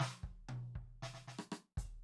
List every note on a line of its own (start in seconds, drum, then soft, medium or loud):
0.00 snare medium
0.23 kick soft
0.49 high tom medium
0.76 kick soft
1.03 snare medium
1.14 snare soft
1.28 snare soft
1.39 cross-stick medium
1.52 cross-stick medium
1.77 open hi-hat medium
1.77 kick medium